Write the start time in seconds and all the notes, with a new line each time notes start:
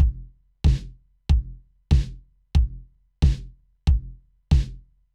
0.01 kick
0.66 kick, snare
1.31 kick
1.93 kick, snare
2.57 kick
3.24 kick, snare
3.89 kick
4.53 kick, snare